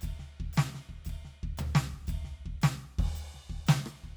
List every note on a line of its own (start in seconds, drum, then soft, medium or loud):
0.01 kick medium
0.01 ride medium
0.01 percussion medium
0.19 snare soft
0.40 kick medium
0.53 ride medium
0.53 percussion medium
0.57 snare loud
0.74 snare soft
0.89 kick soft
1.05 kick medium
1.05 percussion medium
1.09 ride soft
1.25 snare soft
1.43 kick medium
1.57 floor tom loud
1.57 percussion medium
1.75 snare loud
1.92 kick soft
2.07 kick medium
2.07 ride medium
2.07 percussion medium
2.24 snare soft
2.46 kick medium
2.62 snare loud
2.62 percussion medium
2.77 snare soft
2.99 kick medium
2.99 crash medium
3.15 percussion medium
3.19 ride soft
3.34 snare soft
3.50 kick medium
3.67 snare loud
3.67 ride medium
3.67 percussion medium
3.86 cross-stick medium
4.04 kick soft